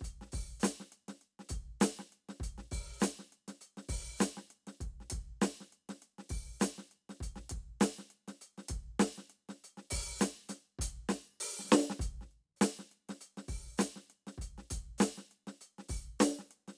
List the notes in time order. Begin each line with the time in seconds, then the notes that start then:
0.01 closed hi-hat, kick
0.21 snare
0.26 snare
0.32 open hi-hat, kick
0.60 snare, hi-hat pedal
0.64 closed hi-hat
0.80 snare
0.92 closed hi-hat
1.08 snare, closed hi-hat
1.21 closed hi-hat
1.39 snare
1.49 open hi-hat, kick
1.80 closed hi-hat, snare, hi-hat pedal
1.99 snare
2.12 closed hi-hat
2.29 snare
2.40 closed hi-hat, kick
2.58 snare
2.71 open hi-hat, kick
3.00 closed hi-hat, snare, hi-hat pedal
3.19 snare
3.32 closed hi-hat
3.48 snare, closed hi-hat
3.61 closed hi-hat
3.77 snare
3.89 open hi-hat, kick
4.19 closed hi-hat, snare, hi-hat pedal
4.37 snare
4.50 closed hi-hat
4.67 snare, closed hi-hat
4.80 kick, closed hi-hat
5.00 snare
5.10 kick, open hi-hat
5.41 closed hi-hat, snare, hi-hat pedal
5.60 snare
5.72 closed hi-hat
5.89 snare, closed hi-hat
6.02 closed hi-hat
6.18 snare
6.29 kick, open hi-hat
6.60 closed hi-hat, snare, hi-hat pedal
6.78 snare
6.91 closed hi-hat
7.09 snare, closed hi-hat
7.20 closed hi-hat, kick
7.36 snare
7.50 kick, open hi-hat
7.80 closed hi-hat, snare, hi-hat pedal
7.98 snare
8.10 closed hi-hat
8.28 snare, closed hi-hat
8.41 closed hi-hat
8.58 snare
8.69 kick, closed hi-hat
9.00 closed hi-hat, snare, hi-hat pedal
9.18 snare
9.30 closed hi-hat
9.49 snare, closed hi-hat
9.64 closed hi-hat
9.77 snare
9.90 open hi-hat, kick
10.19 closed hi-hat, snare, hi-hat pedal
10.49 closed hi-hat, snare
10.79 closed hi-hat, kick
11.09 closed hi-hat, snare
11.40 open hi-hat
11.59 snare
11.64 snare
11.68 snare, hi-hat pedal
11.72 snare
11.90 snare
11.99 closed hi-hat, kick
12.21 snare
12.31 closed hi-hat
12.56 hi-hat pedal
12.61 closed hi-hat, snare
12.79 snare
12.91 closed hi-hat
13.09 snare, closed hi-hat
13.21 closed hi-hat
13.37 snare
13.48 open hi-hat, kick
13.78 closed hi-hat, snare, hi-hat pedal
13.96 snare
14.10 closed hi-hat
14.27 snare, closed hi-hat
14.38 closed hi-hat, kick
14.58 snare
14.70 open hi-hat, kick
14.98 closed hi-hat, snare, hi-hat pedal
15.18 snare
15.31 closed hi-hat
15.47 snare, closed hi-hat
15.61 closed hi-hat
15.78 snare
15.89 open hi-hat, kick
16.20 closed hi-hat, snare, hi-hat pedal
16.39 snare
16.51 closed hi-hat
16.68 snare, closed hi-hat